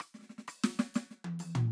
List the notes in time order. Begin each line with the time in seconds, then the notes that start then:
0.02 cross-stick, percussion
0.14 snare
0.19 snare
0.22 snare
0.30 snare
0.38 snare
0.48 cross-stick, percussion
0.64 snare
0.79 snare
0.94 snare, percussion
1.11 snare
1.24 high tom
1.39 high tom, percussion
1.55 floor tom